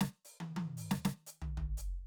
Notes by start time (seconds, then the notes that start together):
0.01 snare
0.25 hi-hat pedal
0.41 open hi-hat, high tom
0.57 high tom
0.78 hi-hat pedal
0.91 snare
1.05 snare
1.27 hi-hat pedal
1.42 floor tom
1.58 floor tom
1.78 hi-hat pedal